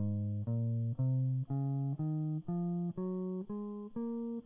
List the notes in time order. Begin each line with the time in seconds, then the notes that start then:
0.00 G#2
0.49 A#2
1.01 C3
1.51 C#3
2.00 D#3
2.49 F3
2.98 F#3
3.50 G#3
3.97 A#3